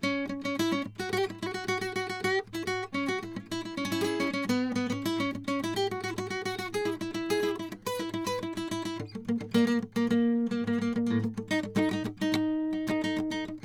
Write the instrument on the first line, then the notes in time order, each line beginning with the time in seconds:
acoustic guitar
0.04 C#4
0.30 C#4
0.46 C#4
0.60 E4
0.73 C#4
1.00 F#4
1.14 G4
1.24 E4
1.43 F#4
1.55 F#4
1.69 F#4
1.82 F#4
1.97 F#4
2.11 F#4
2.25 F#4
2.55 E4
2.68 F#4
2.95 C#4
3.09 F#4
3.24 E4
3.37 C#4
3.52 E4
3.66 E4
3.78 C#4
3.86 C#4
3.92 E4
4.01 G#4
4.06 E4
4.21 C#4
4.35 C#4
4.50 B3
4.76 B3
4.91 C#4
5.06 E4
5.21 C#4
5.36 C#4
5.49 C#4
5.64 E4
5.77 G4
5.92 F#4
6.05 F4
6.19 F#4
6.31 F#4
6.46 F#4
6.59 F#4
6.69 E4
6.75 G#4
6.86 E4
7.01 E4
7.15 E4
7.31 G#4
7.44 E4
7.60 E4
7.73 F4
7.87 B4
8.00 E4
8.14 E4
8.25 E4 B4
8.43 E4
8.58 E4
8.72 E4
8.87 E4
8.98 E4
9.55 A#3
9.68 A#3
9.96 A#3
10.11 A#3
10.52 A#3
10.68 A#3
10.83 A#3
10.97 A#3
11.07 A2 A#3
11.51 D#4
11.77 D#4
11.90 D#4
12.22 D#4
12.33 D#4
12.75 D#4
12.88 D#4
13.05 D#4
13.17 D#4
13.32 D#4
13.49 D#4